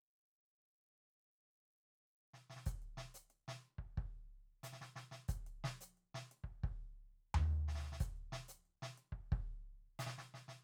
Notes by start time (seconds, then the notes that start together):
2.34 snare
2.50 snare
2.56 snare
2.66 kick, hi-hat pedal
2.82 open hi-hat
2.97 snare
3.14 hi-hat pedal
3.30 closed hi-hat
3.48 snare
3.66 closed hi-hat
3.78 kick
3.98 kick
4.63 snare, hi-hat pedal
4.73 snare
4.81 snare
4.96 snare
5.11 snare
5.28 kick, hi-hat pedal
5.47 closed hi-hat
5.64 snare
5.81 hi-hat pedal
5.97 closed hi-hat
6.15 snare
6.31 closed hi-hat
6.44 kick
6.64 kick
7.34 floor tom
7.68 snare
7.75 snare
7.78 snare
7.84 snare
7.92 snare
8.00 kick, hi-hat pedal
8.16 closed hi-hat
8.32 snare
8.48 hi-hat pedal
8.65 closed hi-hat
8.82 snare
8.98 closed hi-hat
9.12 kick
9.32 kick
9.99 snare, hi-hat pedal
10.07 snare
10.18 snare
10.34 snare
10.48 snare